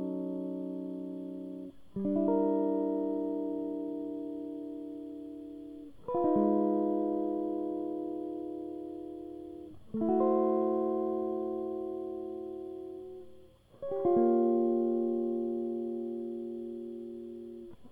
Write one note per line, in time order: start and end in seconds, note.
1.93 5.41 G3
2.05 5.94 D4
2.17 5.94 E4
2.28 5.77 A#4
6.09 9.62 B4
6.15 9.72 F4
6.24 9.81 D#4
6.35 9.73 G#3
9.92 12.62 A3
10.01 12.94 E4
10.10 13.29 F#4
10.20 12.94 C5
13.82 16.66 C#5
13.90 17.47 G4
14.06 17.68 F4
14.14 17.53 A#3